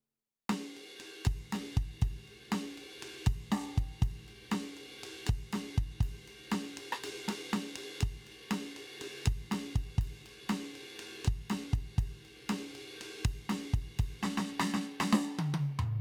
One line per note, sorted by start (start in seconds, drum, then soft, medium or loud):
0.49 snare medium
0.49 ride loud
0.77 ride soft
1.00 ride medium
1.25 kick medium
1.25 ride loud
1.52 snare medium
1.52 ride loud
1.77 kick medium
1.77 ride medium
2.02 kick medium
2.02 ride loud
2.28 ride soft
2.52 snare medium
2.52 ride loud
2.77 ride medium
3.02 ride medium
3.26 kick medium
3.26 ride loud
3.52 snare loud
3.52 ride loud
3.77 kick medium
3.77 ride medium
4.02 kick medium
4.02 ride loud
4.28 ride soft
4.51 snare medium
4.51 ride loud
4.77 ride medium
5.03 ride medium
5.27 kick medium
5.27 ride loud
5.53 snare medium
5.53 ride loud
5.78 kick medium
5.78 ride medium
6.00 kick medium
6.00 ride loud
6.28 ride medium
6.52 snare medium
6.52 ride loud
6.77 ride medium
6.92 cross-stick medium
7.04 ride loud
7.28 snare medium
7.28 ride loud
7.53 snare medium
7.53 ride loud
7.76 ride loud
8.01 kick medium
8.01 ride loud
8.27 ride medium
8.51 snare medium
8.51 ride loud
8.76 ride medium
9.01 ride medium
9.26 kick medium
9.26 ride loud
9.51 snare medium
9.51 ride loud
9.76 kick medium
9.76 ride loud
9.98 kick medium
9.98 ride loud
10.26 ride medium
10.49 snare medium
10.49 ride loud
10.75 ride medium
10.99 ride medium
11.25 kick medium
11.25 ride loud
11.50 snare medium
11.50 ride loud
11.73 kick medium
11.73 ride medium
11.98 kick medium
11.98 ride loud
12.25 ride soft
12.49 snare medium
12.49 ride loud
12.75 ride medium
13.01 ride medium
13.25 kick medium
13.25 ride loud
13.49 snare loud
13.49 ride loud
13.73 kick medium
13.73 ride medium
13.99 kick medium
13.99 ride loud
14.23 snare loud
14.37 snare loud
14.60 snare loud
14.74 snare loud
15.00 snare loud
15.13 snare loud
15.39 high tom loud
15.54 high tom loud
15.79 mid tom loud